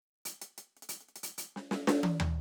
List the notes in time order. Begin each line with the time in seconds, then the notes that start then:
0.25 closed hi-hat
0.42 closed hi-hat
0.58 closed hi-hat
0.77 closed hi-hat
0.82 closed hi-hat
0.89 closed hi-hat
1.01 closed hi-hat
1.09 closed hi-hat
1.16 closed hi-hat
1.23 closed hi-hat
1.38 closed hi-hat
1.56 snare
1.71 snare
1.87 snare
2.03 high tom
2.20 floor tom